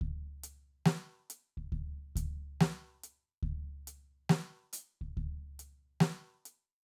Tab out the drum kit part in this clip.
CC |------------x-----------|------------------------|
HH |---x-----x-----x-----x--|---x-----x-----x-----x--|
SD |------o-----------o-----|------o-----------o-----|
BD |o----------go--o--------|o----------oo-----------|